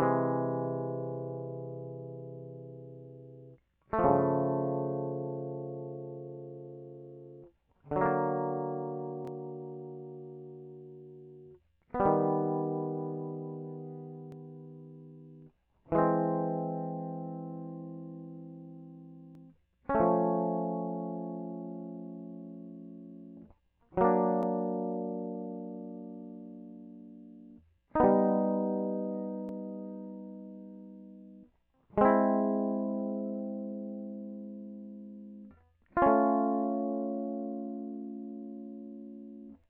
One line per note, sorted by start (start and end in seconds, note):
0.00 3.49 C3
0.00 3.52 E3
0.00 3.56 G#3
3.94 7.48 A3
4.00 7.52 F3
4.06 7.48 C#3
7.93 11.59 D3
7.97 11.59 F#3
8.02 11.56 A#3
8.08 8.13 C#4
11.95 15.52 B3
12.01 15.52 G3
12.07 15.52 D#3
15.93 19.56 E3
15.93 19.56 G#3
15.99 19.55 C4
19.90 23.45 C#4
19.96 23.50 A3
20.01 23.48 F3
23.99 27.61 F#3
23.99 27.61 A#3
24.05 27.61 D4
27.96 31.48 D#4
28.01 31.47 G3
28.01 31.51 B3
31.99 35.53 G#3
31.99 35.56 C4
32.06 35.47 E4
35.98 39.54 F4
36.03 39.58 C#4
36.07 39.56 A3